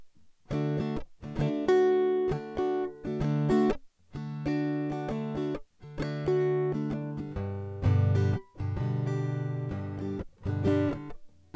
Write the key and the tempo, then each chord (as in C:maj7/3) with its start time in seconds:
D major, 130 BPM
0.00 D:maj
7.38 G:maj
11.08 D:maj